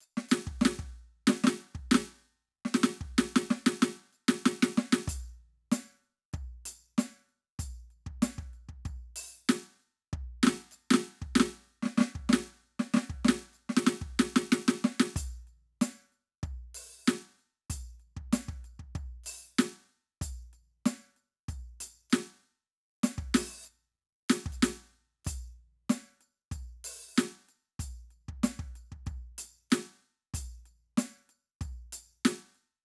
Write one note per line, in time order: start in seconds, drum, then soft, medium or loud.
0.01 percussion soft
0.18 snare medium
0.29 snare loud
0.29 percussion medium
0.47 kick medium
0.60 snare loud
0.60 percussion soft
0.66 snare loud
0.79 kick medium
1.28 snare loud
1.29 snare loud
1.44 snare loud
1.47 snare loud
1.75 kick medium
1.92 snare loud
1.95 snare loud
2.66 snare medium
2.75 snare loud
2.84 snare loud
3.01 kick medium
3.19 snare loud
3.36 snare loud
3.47 percussion soft
3.51 snare loud
3.67 snare loud
3.81 snare loud
3.81 percussion soft
4.13 percussion soft
4.29 snare loud
4.46 snare loud
4.63 snare loud
4.78 snare loud
4.93 snare loud
5.08 kick medium
5.08 percussion loud
5.72 snare loud
5.72 percussion loud
6.04 percussion soft
6.34 kick medium
6.34 percussion soft
6.66 percussion loud
6.98 snare loud
6.98 percussion medium
6.98 percussion loud
7.29 percussion soft
7.59 kick medium
7.59 percussion loud
7.91 percussion soft
8.07 kick medium
8.23 snare loud
8.23 percussion loud
8.39 kick medium
8.54 percussion soft
8.69 kick soft
8.86 kick medium
8.86 percussion soft
9.16 percussion loud
9.49 snare loud
9.49 percussion medium
9.49 percussion loud
9.81 percussion soft
10.13 kick medium
10.43 snare loud
10.47 snare loud
10.72 percussion medium
10.91 snare loud
10.94 snare loud
11.22 kick medium
11.36 snare loud
11.40 snare loud
11.83 snare medium
11.86 snare medium
11.98 snare loud
12.01 snare loud
12.16 kick medium
12.30 snare loud
12.33 snare loud
12.80 snare loud
12.93 snare loud
12.93 percussion soft
12.97 snare loud
13.10 kick medium
13.25 snare loud
13.29 snare loud
13.54 percussion soft
13.70 snare medium
13.77 snare loud
13.86 snare loud
13.86 percussion soft
14.02 kick medium
14.20 snare loud
14.36 snare loud
14.52 snare loud
14.68 snare loud
14.85 snare loud
15.00 snare loud
15.16 kick medium
15.16 percussion loud
15.48 percussion soft
15.82 snare loud
15.82 percussion loud
16.13 percussion soft
16.43 kick medium
16.43 percussion soft
16.75 percussion loud
17.08 snare loud
17.08 percussion medium
17.40 percussion soft
17.70 kick medium
17.70 percussion loud
18.00 percussion soft
18.17 kick medium
18.33 snare loud
18.33 percussion loud
18.49 kick medium
18.65 percussion soft
18.80 kick soft
18.96 kick medium
18.96 percussion soft
19.24 percussion soft
19.27 percussion loud
19.59 snare loud
19.59 percussion medium
20.22 kick medium
20.22 percussion loud
20.53 percussion soft
20.86 snare loud
20.86 percussion loud
21.17 percussion soft
21.49 kick medium
21.49 percussion medium
21.81 percussion loud
22.10 snare loud
22.10 percussion medium
22.14 percussion medium
23.04 snare loud
23.04 percussion loud
23.18 kick medium
23.35 snare loud
23.35 percussion loud
23.64 percussion medium
24.29 snare loud
24.29 percussion soft
24.29 percussion loud
24.46 kick medium
24.53 percussion medium
24.63 snare loud
24.63 percussion loud
25.25 kick medium
25.25 percussion medium
25.28 percussion loud
25.90 snare loud
25.90 percussion loud
26.21 percussion soft
26.52 kick medium
26.52 percussion medium
26.85 percussion loud
27.17 snare loud
27.17 percussion medium
27.19 percussion loud
27.49 percussion soft
27.80 kick medium
27.80 percussion loud
28.11 percussion soft
28.29 kick medium
28.44 snare loud
28.44 percussion loud
28.59 kick medium
28.76 percussion soft
28.92 kick soft
29.07 kick medium
29.07 percussion soft
29.39 percussion loud
29.71 snare loud
29.71 percussion medium
29.73 percussion medium
30.34 kick medium
30.34 percussion loud
30.66 percussion soft
30.98 snare loud
30.98 percussion loud
31.30 percussion soft
31.61 kick medium
31.61 percussion medium
31.93 percussion loud
32.25 snare loud
32.25 percussion medium
32.25 percussion loud
32.55 percussion soft